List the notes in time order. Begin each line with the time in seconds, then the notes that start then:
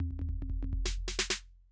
0.00 floor tom, high tom
0.11 kick
0.19 floor tom, high tom
0.29 kick
0.42 floor tom, high tom
0.50 kick
0.63 floor tom, high tom
0.73 kick
0.86 snare
1.08 snare
1.19 snare
1.30 snare